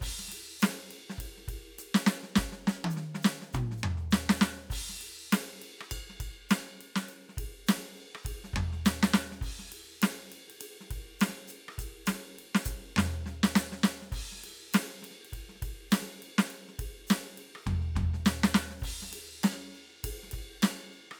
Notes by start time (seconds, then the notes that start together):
0.01 kick, crash
0.07 kick
0.11 kick
0.19 snare
0.28 snare, ride
0.59 snare, hi-hat pedal, ride
0.69 snare
0.91 ride
1.09 snare
1.17 kick, hi-hat pedal, ride
1.37 snare
1.44 kick, snare
1.49 ride
1.54 kick
1.57 kick
1.78 hi-hat pedal, ride
1.94 snare
2.06 snare, hi-hat pedal
2.23 snare
2.35 kick, snare, hi-hat pedal
2.52 snare
2.61 hi-hat pedal
2.67 snare
2.84 high tom
2.90 hi-hat pedal
2.96 snare
3.14 snare
3.22 snare, hi-hat pedal
3.41 snare
3.53 kick, hi-hat pedal, mid tom
3.60 kick
3.63 kick
3.71 snare
3.78 hi-hat pedal
3.83 floor tom
3.97 snare
4.11 snare, hi-hat pedal
4.29 snare
4.37 hi-hat pedal
4.41 snare
4.70 kick, hi-hat pedal, crash
4.77 kick
4.80 kick
4.89 snare
4.94 snare
5.01 snare, ride
5.32 snare, hi-hat pedal, ride
5.62 ride
5.81 cross-stick
5.89 kick, hi-hat pedal, ride bell
6.09 snare
6.20 kick, ride bell
6.26 kick
6.29 kick
6.49 snare, hi-hat pedal, ride bell
6.81 ride
6.96 snare
7.07 hi-hat pedal, ride
7.29 snare
7.37 kick, ride
7.43 kick
7.46 kick
7.67 snare, hi-hat pedal, ride
7.77 snare
7.97 ride
8.15 cross-stick
8.23 kick, hi-hat pedal, ride
8.31 kick
8.34 kick
8.44 snare
8.53 kick, floor tom
8.63 kick
8.72 snare
8.85 snare, hi-hat pedal
9.03 snare
9.13 snare
9.31 snare
9.41 kick, crash
9.51 kick
9.59 snare
9.67 cross-stick, snare
9.72 ride
10.02 snare, hi-hat pedal, ride
10.29 hi-hat pedal, ride
10.41 snare
10.47 snare, ride
10.52 snare
10.60 hi-hat pedal, ride
10.81 snare
10.87 kick, snare, ride
10.96 kick
11.00 kick
11.19 snare, hi-hat pedal, ride
11.29 snare
11.47 hi-hat pedal, ride
11.68 cross-stick
11.78 kick, snare, hi-hat pedal, ride
11.87 kick
12.06 kick, snare, hi-hat pedal, ride
12.39 ride
12.55 snare
12.64 kick, hi-hat pedal, ride
12.72 kick
12.76 kick
12.96 snare, floor tom
13.05 snare
13.26 snare
13.43 snare
13.55 snare, hi-hat pedal
13.64 snare
13.72 snare
13.83 snare
14.02 snare
14.12 kick, crash
14.18 kick
14.32 snare
14.38 snare
14.42 snare, ride
14.46 snare
14.73 snare, hi-hat pedal, ride
15.02 snare, ride
15.11 snare
15.25 ride
15.30 kick, hi-hat pedal, ride
15.49 snare
15.55 snare
15.62 kick, ride
15.69 kick
15.91 snare, hi-hat pedal, ride
16.02 snare
16.22 ride
16.38 snare
16.48 hi-hat pedal, ride
16.68 snare
16.79 kick, ride
16.85 kick
16.88 kick
17.07 snare, hi-hat pedal, ride
17.35 hi-hat pedal, ride
17.55 cross-stick
17.62 hi-hat pedal
17.66 kick, floor tom
17.72 kick
17.81 snare
17.95 kick, floor tom
18.03 kick
18.13 snare
18.25 snare, hi-hat pedal
18.43 snare
18.51 snare, hi-hat pedal
18.70 snare
18.79 kick, hi-hat pedal
18.83 crash
18.88 kick
19.02 snare
19.11 snare, ride
19.43 snare, hi-hat pedal, ride bell
19.52 snare
19.73 hi-hat pedal, ride
19.90 ride
20.03 kick, hi-hat pedal, ride
20.10 kick
20.13 kick
20.23 snare
20.27 snare
20.31 kick, snare, ride
20.42 kick
20.62 snare, hi-hat pedal, ride bell
20.70 snare
20.92 hi-hat pedal, ride
21.11 cross-stick